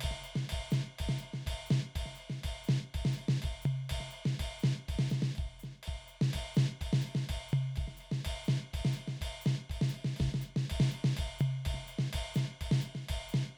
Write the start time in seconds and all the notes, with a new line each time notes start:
0.01 kick, ride
0.10 kick, snare
0.24 hi-hat pedal, ride
0.36 snare
0.50 kick, ride
0.59 kick
0.71 snare, hi-hat pedal
0.99 kick, ride
1.06 kick, snare
1.19 hi-hat pedal
1.23 ride
1.34 snare
1.47 kick, ride
1.53 kick
1.66 hi-hat pedal
1.71 snare
1.96 kick, ride
2.02 kick
2.06 snare
2.15 hi-hat pedal, ride
2.30 snare
2.44 kick, ride
2.50 kick
2.64 hi-hat pedal
2.69 snare
2.95 kick, ride
3.01 kick
3.06 snare
3.13 hi-hat pedal
3.18 ride
3.29 snare
3.42 kick, ride
3.51 kick
3.62 floor tom, hi-hat pedal
3.90 kick, ride
3.97 kick, snare
4.11 hi-hat pedal, ride
4.26 snare
4.40 kick, ride
4.46 kick
4.59 hi-hat pedal
4.64 snare
4.89 kick, ride
4.95 kick
4.99 snare
5.10 snare, hi-hat pedal
5.23 snare
5.35 kick, ride
5.45 kick
5.60 hi-hat pedal
5.64 snare
5.83 ride
5.88 kick
6.08 hi-hat pedal, ride
6.22 snare
6.34 kick, ride
6.40 kick
6.55 snare, hi-hat pedal
6.81 kick, ride
6.87 kick
6.93 snare
7.02 hi-hat pedal
7.07 ride
7.15 snare
7.29 kick, ride
7.36 kick
7.49 hi-hat pedal
7.54 floor tom
7.76 kick, ride bell
7.84 kick
7.88 snare
7.97 hi-hat pedal, ride
8.12 snare
8.25 kick, ride
8.32 kick
8.45 snare, hi-hat pedal
8.74 kick, ride
8.80 kick
8.85 snare
8.93 hi-hat pedal
8.97 ride
9.08 snare
9.21 kick, ride
9.27 kick
9.42 hi-hat pedal
9.46 snare
9.70 kick, ride
9.82 snare
9.89 hi-hat pedal
9.95 ride
10.05 snare
10.17 kick, snare, ride
10.27 kick
10.34 snare
10.42 hi-hat pedal
10.57 snare
10.70 kick, ride
10.77 kick, snare
10.91 hi-hat pedal, ride
11.05 snare
11.17 kick, ride
11.26 kick
11.39 hi-hat pedal, floor tom
11.66 kick, ride
11.73 kick, snare
11.88 hi-hat pedal, ride
11.99 snare
12.13 kick, ride
12.20 kick
12.34 snare, hi-hat pedal
12.61 kick, ride
12.72 snare
12.81 hi-hat pedal, ride
12.95 snare
13.09 kick, ride
13.16 kick
13.29 hi-hat pedal
13.34 snare